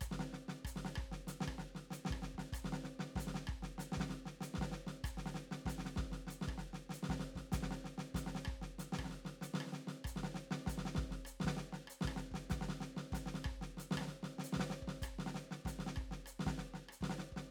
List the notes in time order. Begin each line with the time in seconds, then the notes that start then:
0.01 kick, cross-stick, hi-hat pedal
0.12 snare
0.20 snare
0.33 snare
0.49 snare
0.65 kick, cross-stick, hi-hat pedal
0.76 snare
0.85 snare
0.96 kick, cross-stick
1.12 snare
1.27 snare, hi-hat pedal
1.41 snare
1.48 kick, cross-stick
1.59 snare
1.75 snare
1.91 snare, hi-hat pedal
2.05 snare
2.11 kick, cross-stick
2.22 snare
2.35 kick, snare
2.53 kick, cross-stick, hi-hat pedal
2.65 snare
2.73 snare
2.84 snare
3.00 snare
3.16 kick, snare
3.20 hi-hat pedal
3.27 snare
3.35 snare
3.47 kick, cross-stick
3.63 snare
3.78 snare, hi-hat pedal
3.92 snare
3.97 kick, snare
4.10 snare
4.26 snare
4.41 snare, hi-hat pedal
4.54 kick, snare
4.62 snare
4.72 snare
4.87 snare
5.04 kick, cross-stick, hi-hat pedal
5.17 snare
5.26 snare
5.35 snare
5.51 snare
5.66 kick, snare, hi-hat pedal
5.79 snare
5.85 snare
5.96 kick, snare
6.05 kick
6.12 snare
6.27 snare, hi-hat pedal
6.42 snare
6.48 kick, cross-stick
6.58 snare
6.73 snare
6.90 snare
6.94 hi-hat pedal
7.03 snare
7.09 kick, snare
7.20 snare
7.36 kick, snare
7.52 kick, snare, hi-hat pedal
7.63 snare
7.71 snare
7.85 snare
7.98 snare
8.15 kick, snare, hi-hat pedal
8.27 snare
8.35 snare
8.45 kick, cross-stick
8.62 snare
8.79 snare, hi-hat pedal
8.93 snare
8.99 kick, cross-stick
9.05 snare
9.10 snare
9.25 snare
9.42 snare, hi-hat pedal
9.54 snare
9.61 cross-stick
9.67 snare
9.73 snare
9.88 snare
10.05 kick, cross-stick, hi-hat pedal
10.16 snare
10.24 snare
10.35 snare
10.51 snare
10.67 kick, snare, hi-hat pedal
10.78 snare
10.86 snare
10.95 kick, snare
11.06 kick
11.11 snare
11.25 cross-stick, hi-hat pedal
11.40 snare
11.44 kick, snare
11.57 snare
11.73 snare
11.88 cross-stick, hi-hat pedal
12.01 kick, snare
12.08 cross-stick
12.11 cross-stick
12.17 snare
12.32 kick, snare
12.50 kick, snare, hi-hat pedal
12.59 kick, snare
12.69 snare
12.81 snare
12.97 snare
13.12 kick, snare, hi-hat pedal
13.26 snare
13.34 snare
13.45 kick, cross-stick
13.53 kick
13.62 snare
13.77 snare, hi-hat pedal
13.91 snare
13.96 kick, cross-stick
14.01 snare
14.07 snare
14.23 snare
14.39 snare
14.44 hi-hat pedal
14.53 kick, snare
14.60 snare
14.70 snare
14.82 kick
14.88 snare
15.02 kick, cross-stick, hi-hat pedal
15.19 snare
15.27 snare
15.35 snare
15.51 snare
15.65 kick, snare, hi-hat pedal
15.79 snare
15.87 snare
15.96 kick, cross-stick
16.11 snare
16.26 cross-stick, hi-hat pedal
16.40 snare
16.46 kick, snare
16.58 snare
16.74 snare
16.89 cross-stick, hi-hat pedal
17.01 kick, snare
17.10 snare
17.19 snare
17.32 kick
17.37 snare